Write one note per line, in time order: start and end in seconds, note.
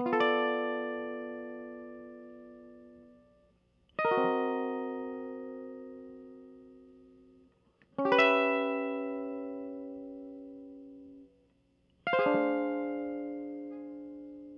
0.00 3.37 B3
0.06 3.11 F4
0.13 2.67 A4
0.20 3.47 D5
3.99 5.30 D#5
4.05 7.35 A#4
4.11 7.48 F#4
4.18 7.51 C4
7.99 11.28 C#4
8.05 11.31 G4
8.12 11.47 B4
8.19 9.92 E5
12.07 13.88 F5
12.13 14.57 C5
12.19 14.57 G#4
12.26 14.57 D4